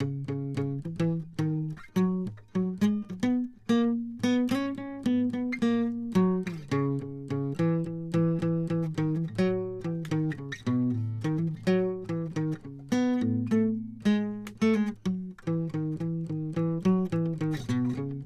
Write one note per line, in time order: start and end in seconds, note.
0.01 0.27 C#3
0.29 0.56 C#3
0.58 0.83 C#3
0.86 1.00 E3
1.00 1.28 E3
1.39 1.77 D#3
1.97 2.30 F#3
2.56 2.79 F#3
2.82 3.09 G#3
3.10 3.24 F#3
3.23 3.36 F#3
3.23 3.51 B3
3.70 4.21 A#3
4.24 4.50 B3
4.52 4.76 C#4
4.79 5.05 C#4
5.06 5.32 B3
5.34 5.57 B3
5.62 6.14 A#3
6.16 6.43 F#3
6.72 7.00 C#3
7.00 7.29 C#3
7.31 7.56 C#3
7.60 7.86 E3
7.87 8.13 E3
8.14 8.41 E3
8.43 8.70 E3
8.71 8.98 E3
8.98 9.16 D#3
9.16 9.25 E3
9.26 9.48 A#2
9.39 9.83 F#3
9.85 10.11 E3
10.12 10.36 D#3
10.39 10.57 C#3
10.67 10.91 B2
10.92 11.08 A2
11.25 11.39 D#3
11.39 11.49 E3
11.49 11.57 D#3
11.67 12.09 F#3
12.10 12.31 E3
12.37 12.58 D#3
12.66 12.85 C#3
12.92 13.47 B3
13.22 13.51 A2
13.52 13.95 A3
14.06 14.54 G#3
14.62 14.75 A3
14.75 14.94 G#3
15.06 15.36 F#3
15.48 15.72 E3
15.75 15.99 D#3
16.01 16.28 E3
16.30 16.55 D#3
16.57 16.83 E3
16.86 17.09 F#3
17.13 17.40 E3
17.41 17.58 D#3
17.69 17.95 B2
17.99 18.25 C#3